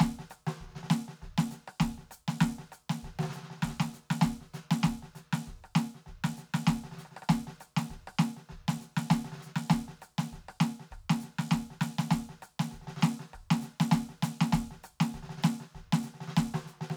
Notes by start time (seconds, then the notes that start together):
0.01 kick, snare
0.20 snare
0.31 cross-stick, hi-hat pedal
0.48 snare
0.61 kick, snare
0.69 snare
0.75 snare
0.84 snare
0.91 snare, hi-hat pedal
1.09 snare
1.23 kick, snare
1.39 snare
1.52 snare, hi-hat pedal
1.69 cross-stick
1.81 kick, snare
1.99 snare
2.12 cross-stick, hi-hat pedal
2.29 snare
2.42 kick, snare
2.59 snare
2.73 cross-stick, hi-hat pedal
2.91 snare
3.04 kick, snare
3.20 snare
3.24 snare
3.28 snare
3.30 snare, hi-hat pedal
3.37 snare
3.44 snare
3.51 snare
3.58 snare
3.63 kick, snare
3.81 snare
3.95 snare, hi-hat pedal
4.11 snare
4.22 kick, snare
4.42 snare
4.55 snare, hi-hat pedal
4.72 snare
4.84 kick, snare
5.04 snare
5.16 snare, hi-hat pedal
5.34 snare
5.48 kick, snare
5.65 cross-stick
5.76 snare, hi-hat pedal
5.96 snare
6.07 kick, snare
6.25 snare
6.38 snare, hi-hat pedal
6.55 snare
6.68 kick, snare
6.85 snare
6.92 snare
6.98 snare, hi-hat pedal
7.06 cross-stick
7.12 snare
7.18 cross-stick
7.23 cross-stick
7.30 kick, snare
7.48 snare
7.61 cross-stick, hi-hat pedal
7.78 snare
7.91 kick, snare
8.08 cross-stick
8.20 snare, hi-hat pedal
8.38 snare
8.50 kick, snare
8.69 snare
8.81 snare, hi-hat pedal
8.98 snare
9.11 kick, snare
9.26 snare
9.33 snare
9.39 snare
9.43 snare, hi-hat pedal
9.57 snare
9.71 kick, snare
9.89 snare
10.03 cross-stick, hi-hat pedal
10.19 snare
10.33 kick, snare
10.49 cross-stick
10.61 snare, hi-hat pedal
10.81 snare
10.92 kick, cross-stick
11.11 snare
11.21 snare, hi-hat pedal
11.40 snare
11.52 kick, snare
11.71 snare
11.82 snare, hi-hat pedal
11.99 snare
12.12 kick, snare
12.30 snare
12.43 cross-stick, hi-hat pedal
12.60 snare
12.72 kick, snare
12.88 snare
12.97 snare
13.02 snare, hi-hat pedal
13.20 snare
13.34 kick, cross-stick
13.52 snare
13.62 snare, hi-hat pedal
13.81 snare
13.92 kick, snare
14.10 snare
14.24 snare, hi-hat pedal
14.42 snare
14.54 kick, snare
14.72 snare
14.85 cross-stick, hi-hat pedal
15.01 snare
15.15 kick, snare
15.24 snare
15.30 snare
15.38 snare
15.44 snare, hi-hat pedal
15.50 cross-stick
15.61 snare
15.76 kick, snare
15.94 snare
16.04 snare, hi-hat pedal
16.22 snare
16.29 snare
16.38 kick, snare
16.55 snare
16.67 snare, hi-hat pedal
16.75 cross-stick
16.82 snare
16.91 snare